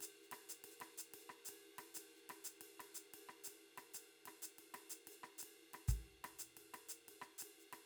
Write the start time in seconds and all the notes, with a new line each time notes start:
0.01 hi-hat pedal, ride
0.23 hi-hat pedal
0.32 cross-stick, ride
0.49 hi-hat pedal
0.64 ride
0.71 hi-hat pedal
0.81 cross-stick, ride
0.98 hi-hat pedal
1.14 ride
1.19 hi-hat pedal
1.30 cross-stick
1.45 hi-hat pedal, ride
1.79 cross-stick, ride
1.95 hi-hat pedal, ride
2.16 hi-hat pedal
2.30 cross-stick, ride
2.44 hi-hat pedal
2.61 ride
2.80 cross-stick, ride
2.95 hi-hat pedal
3.14 ride
3.29 cross-stick
3.44 hi-hat pedal, ride
3.78 cross-stick, ride
3.94 hi-hat pedal, ride
4.26 cross-stick, ride
4.42 hi-hat pedal
4.59 ride
4.74 cross-stick, ride
4.90 hi-hat pedal
5.07 hi-hat pedal, ride
5.24 cross-stick
5.39 hi-hat pedal
5.43 ride
5.74 cross-stick, ride
5.88 kick, hi-hat pedal, ride
6.24 cross-stick, ride
6.39 hi-hat pedal
6.57 ride
6.74 cross-stick, ride
6.89 hi-hat pedal
7.09 ride
7.22 cross-stick
7.38 hi-hat pedal
7.43 ride
7.60 hi-hat pedal
7.73 cross-stick, ride